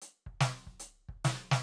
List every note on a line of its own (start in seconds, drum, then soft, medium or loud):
0.02 closed hi-hat medium
0.26 kick soft
0.41 closed hi-hat loud
0.41 snare loud
0.67 kick soft
0.80 closed hi-hat loud
1.09 kick soft
1.24 closed hi-hat loud
1.24 snare loud
1.51 snare loud